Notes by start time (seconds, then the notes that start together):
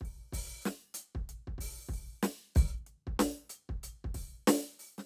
0.01 kick
0.05 open hi-hat
0.33 open hi-hat, kick
0.45 kick
0.62 snare, hi-hat pedal
0.94 closed hi-hat
1.15 kick
1.29 closed hi-hat
1.48 kick
1.58 open hi-hat, kick
1.89 kick
1.94 open hi-hat
2.23 snare
2.55 open hi-hat, kick
2.87 closed hi-hat
3.07 kick
3.19 closed hi-hat, snare
3.50 closed hi-hat
3.69 kick
3.83 closed hi-hat
4.04 kick
4.15 kick, open hi-hat
4.48 open hi-hat, snare
4.79 open hi-hat
4.98 snare